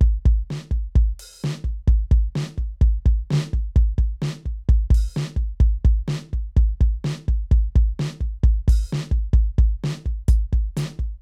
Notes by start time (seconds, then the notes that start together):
0.01 kick
0.26 kick
0.50 snare
0.67 kick, snare
0.96 kick
1.19 open hi-hat
1.42 snare, hi-hat pedal
1.52 snare
1.60 snare
1.64 kick
1.88 kick
2.11 kick
2.36 snare
2.42 snare
2.58 kick, snare
2.81 kick
3.06 kick
3.31 snare
3.33 snare
3.53 kick
3.76 kick
3.98 kick
4.22 snare
4.46 kick
4.69 kick
4.90 kick
4.94 open hi-hat
5.16 snare, hi-hat pedal
5.33 kick, snare
5.60 kick
5.85 kick
6.08 snare
6.25 snare
6.33 kick
6.57 kick
6.81 kick
7.04 snare
7.22 snare
7.28 kick
7.51 kick
7.76 kick
7.99 snare
8.15 snare
8.21 kick
8.44 kick
8.68 open hi-hat, kick
8.90 snare, hi-hat pedal
9.11 kick
9.33 kick
9.58 kick
9.84 snare
9.93 snare
10.06 kick
10.28 closed hi-hat, kick
10.53 kick
10.77 closed hi-hat, snare
10.86 snare
10.99 kick